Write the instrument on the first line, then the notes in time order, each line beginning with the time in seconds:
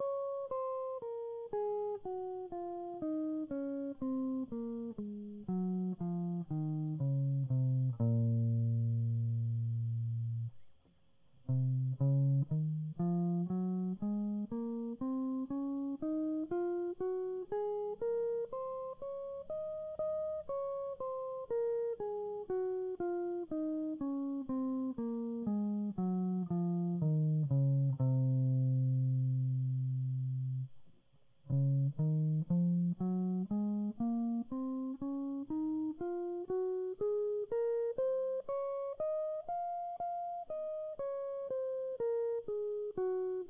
electric guitar
0.01 C#5
0.51 C5
1.02 A#4
1.53 G#4
2.06 F#4
2.52 F4
3.02 D#4
3.51 C#4
4.02 C4
4.53 A#3
5.00 G#3
5.49 F#3
6.02 F3
6.52 D#3
7.01 C#3
7.52 C3
8.02 A#2
11.50 C3
12.02 C#3
12.53 D#3
13.00 F3
13.51 F#3
14.03 G#3
14.52 A#3
15.02 C4
15.51 C#4
16.03 D#4
16.52 F4
17.01 F#4
17.52 G#4
18.02 A#4
18.53 C5
19.02 C#5
19.50 D#5
19.99 D#5
20.49 C#5
21.01 C5
21.51 A#4
22.00 G#4
22.50 F#4
23.01 F4
23.52 D#4
24.01 C#4
24.50 C4
24.99 A#3
25.47 G#3
25.99 F#3
26.51 F3
27.03 D#3
27.52 C#3
28.02 C3
31.51 C#3
32.00 D#3
32.51 F3
33.01 F#3
33.52 G#3
34.01 A#3
34.52 C4
35.02 C#4
35.51 D#4
36.01 F4
36.50 F#4
37.01 G#4
37.52 A#4
37.99 C5
38.49 C#5
39.00 D#5
39.49 F5
40.00 F5
40.50 D#5
40.99 C#5
41.51 C5
42.00 A#4
42.49 G#4
42.98 F#4